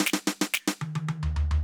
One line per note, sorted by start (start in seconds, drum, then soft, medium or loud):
0.00 snare loud
0.06 snare loud
0.13 snare loud
0.27 snare loud
0.41 snare loud
0.54 snare loud
0.68 snare loud
0.81 high tom loud
0.95 high tom loud
1.09 high tom loud
1.23 floor tom loud
1.36 floor tom loud
1.51 floor tom loud